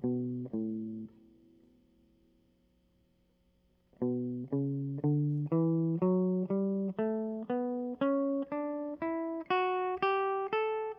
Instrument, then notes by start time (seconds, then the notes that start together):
electric guitar
0.06 B2
0.55 A2
4.04 B2
4.54 C#3
5.05 D3
5.53 E3
6.03 F#3
6.51 G3
7.00 A3
7.51 B3
8.02 C#4
8.52 D4
9.02 E4
9.51 F#4
10.03 G4
10.53 A4